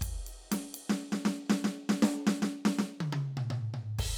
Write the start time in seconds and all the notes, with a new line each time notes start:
0.01 kick, ride
0.27 ride
0.52 snare, ride
0.74 ride
0.89 snare
1.12 snare
1.25 snare
1.50 snare
1.64 snare
1.89 snare
2.02 snare
2.27 snare
2.42 snare
2.65 snare
2.79 snare
3.00 high tom
3.13 high tom
3.37 mid tom
3.50 mid tom
3.74 mid tom
3.99 kick, crash